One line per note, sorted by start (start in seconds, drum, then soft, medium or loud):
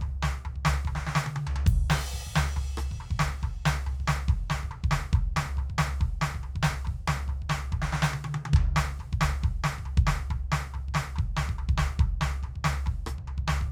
0.01 kick medium
0.01 floor tom medium
0.22 snare loud
0.22 floor tom loud
0.45 kick soft
0.45 floor tom medium
0.56 kick soft
0.65 snare loud
0.65 floor tom loud
0.85 kick medium
0.85 floor tom medium
0.95 snare medium
1.07 snare medium
1.15 snare loud
1.26 high tom loud
1.36 high tom loud
1.47 floor tom loud
1.56 floor tom loud
1.66 kick loud
1.66 ride medium
1.90 snare loud
1.90 crash loud
2.13 kick soft
2.27 kick soft
2.36 snare loud
2.36 floor tom loud
2.56 kick soft
2.56 floor tom medium
2.77 cross-stick medium
2.77 floor tom loud
2.91 kick medium
2.91 snare soft
3.00 floor tom medium
3.11 kick medium
3.19 snare loud
3.19 floor tom loud
3.40 kick medium
3.40 snare soft
3.40 floor tom medium
3.65 snare loud
3.65 floor tom loud
3.85 kick soft
3.85 snare soft
3.85 floor tom medium
4.00 kick soft
4.07 snare loud
4.07 floor tom loud
4.28 kick medium
4.28 floor tom medium
4.50 snare medium
4.50 floor tom loud
4.63 kick soft
4.63 snare soft
4.71 floor tom medium
4.84 kick medium
4.91 snare loud
4.91 floor tom loud
5.13 kick loud
5.13 floor tom medium
5.36 snare loud
5.36 floor tom loud
5.57 kick soft
5.57 floor tom medium
5.70 kick soft
5.78 snare loud
5.78 floor tom loud
6.01 kick medium
6.01 floor tom medium
6.21 snare loud
6.21 floor tom medium
6.35 kick soft
6.35 snare soft
6.43 floor tom medium
6.56 kick medium
6.63 snare loud
6.63 floor tom loud
6.85 kick medium
6.85 floor tom medium
7.07 snare loud
7.07 floor tom loud
7.28 kick soft
7.28 floor tom medium
7.42 kick soft
7.49 snare loud
7.49 floor tom loud
7.64 snare soft
7.72 kick medium
7.72 floor tom medium
7.82 snare loud
7.92 snare loud
8.02 snare loud
8.13 high tom loud
8.24 high tom loud
8.34 high tom loud
8.45 high tom loud
8.53 kick loud
8.53 floor tom loud
8.76 snare loud
8.76 floor tom loud
8.84 snare soft
8.89 snare soft
8.99 kick soft
8.99 floor tom medium
9.13 kick medium
9.21 snare loud
9.21 floor tom loud
9.41 kick medium
9.41 snare soft
9.41 floor tom medium
9.64 snare loud
9.64 floor tom medium
9.78 kick soft
9.85 floor tom medium
9.97 kick loud
10.07 snare loud
10.07 floor tom loud
10.30 kick medium
10.30 floor tom medium
10.52 snare loud
10.52 floor tom loud
10.74 kick soft
10.74 floor tom medium
10.88 kick soft
10.94 snare loud
10.94 floor tom loud
11.16 kick medium
11.16 floor tom medium
11.37 snare loud
11.37 floor tom loud
11.49 kick medium
11.58 floor tom medium
11.69 kick medium
11.78 snare loud
11.78 floor tom loud
11.99 kick loud
11.99 floor tom medium
12.21 snare loud
12.21 floor tom loud
12.43 kick soft
12.43 floor tom medium
12.55 kick soft
12.64 snare loud
12.64 floor tom loud
12.86 kick medium
12.86 floor tom medium
13.06 cross-stick medium
13.06 floor tom loud
13.18 kick soft
13.27 floor tom medium
13.38 kick medium
13.48 snare loud
13.48 floor tom loud
13.61 kick medium